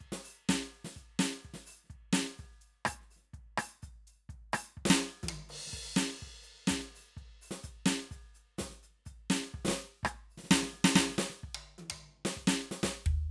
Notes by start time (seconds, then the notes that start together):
0.01 kick, closed hi-hat
0.13 snare
0.24 open hi-hat
0.50 open hi-hat, kick, snare
0.74 open hi-hat
0.85 snare
0.96 open hi-hat, kick
1.20 open hi-hat, snare
1.31 snare
1.44 kick, closed hi-hat
1.54 snare
1.66 open hi-hat
1.85 snare
1.90 kick, closed hi-hat
2.13 open hi-hat, snare
2.23 snare
2.37 open hi-hat, kick
2.43 snare
2.51 snare
2.59 snare, open hi-hat
2.86 open hi-hat, kick, cross-stick
3.01 snare
3.11 open hi-hat
3.17 snare
3.22 snare
3.34 kick, closed hi-hat
3.58 open hi-hat, cross-stick
3.83 closed hi-hat, kick
4.08 open hi-hat
4.30 kick, closed hi-hat
4.53 open hi-hat, cross-stick
4.78 kick
4.86 snare
4.89 snare
5.24 kick, high tom
5.29 high tom
5.48 high tom, crash
5.68 snare
5.74 kick
5.96 open hi-hat, snare
6.19 kick, open hi-hat
6.28 snare
6.31 snare
6.43 open hi-hat
6.68 open hi-hat, kick, snare
6.79 snare
6.92 open hi-hat, snare
6.98 snare
7.01 snare
7.17 kick, closed hi-hat
7.42 open hi-hat
7.51 snare
7.63 closed hi-hat, kick
7.86 open hi-hat, snare
8.12 closed hi-hat, kick
8.35 open hi-hat
8.58 open hi-hat, kick, snare
8.71 snare
8.83 open hi-hat
8.91 snare
8.97 snare
9.06 closed hi-hat, kick
9.30 open hi-hat, snare
9.41 snare
9.55 kick
9.65 snare
9.69 snare
9.72 snare
10.03 closed hi-hat, kick, cross-stick, hi-hat pedal
10.30 open hi-hat
10.38 snare
10.44 snare
10.52 kick, snare
10.63 snare
10.74 snare
10.85 snare
10.96 kick, snare, hi-hat pedal
11.10 snare
11.19 snare
11.30 snare
11.44 kick
11.55 high tom
11.79 high tom
11.91 kick, high tom
11.99 high tom
12.26 snare
12.34 kick, snare, hi-hat pedal
12.48 snare
12.72 snare
12.84 kick, snare, hi-hat pedal
13.07 mid tom